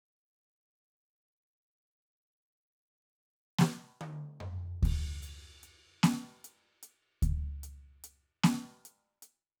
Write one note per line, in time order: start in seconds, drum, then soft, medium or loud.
3.58 snare loud
3.61 snare loud
4.01 high tom medium
4.40 floor tom medium
4.83 kick loud
4.83 ride medium
4.83 crash medium
5.22 closed hi-hat soft
5.63 closed hi-hat soft
6.03 snare loud
6.03 closed hi-hat medium
6.44 closed hi-hat medium
6.83 closed hi-hat medium
7.22 kick loud
7.22 closed hi-hat medium
7.63 closed hi-hat medium
8.04 closed hi-hat medium
8.44 snare loud
8.44 closed hi-hat medium
8.85 closed hi-hat medium
9.22 closed hi-hat medium